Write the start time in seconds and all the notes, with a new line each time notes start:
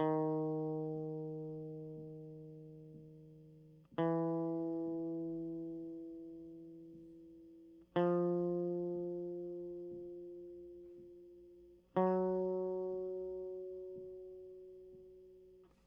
0.00 D#3
3.99 E3
7.97 F3
11.97 F#3